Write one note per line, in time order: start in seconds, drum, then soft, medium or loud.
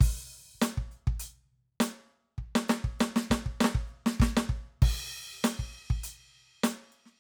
0.01 open hi-hat loud
0.01 kick loud
0.55 kick soft
0.61 closed hi-hat loud
0.61 snare loud
0.61 hi-hat pedal soft
0.78 kick medium
0.92 closed hi-hat soft
1.07 kick medium
1.20 closed hi-hat loud
1.80 closed hi-hat loud
1.80 snare loud
2.38 kick medium
2.43 ride soft
2.56 snare loud
2.69 snare loud
2.69 hi-hat pedal medium
2.85 kick medium
3.00 snare loud
3.00 hi-hat pedal medium
3.16 snare loud
3.31 kick medium
3.31 snare loud
3.46 kick medium
3.61 snare loud
3.61 hi-hat pedal medium
3.65 snare loud
3.75 kick medium
3.87 hi-hat pedal soft
4.06 snare loud
4.20 kick loud
4.20 snare loud
4.37 snare loud
4.50 kick medium
4.50 snare soft
4.79 kick soft
4.82 kick loud
4.82 crash loud
5.43 closed hi-hat loud
5.43 kick soft
5.43 snare loud
5.59 kick medium
5.74 closed hi-hat soft
5.90 kick medium
6.04 closed hi-hat loud
6.64 closed hi-hat loud
6.64 snare loud
6.92 closed hi-hat soft
7.06 snare soft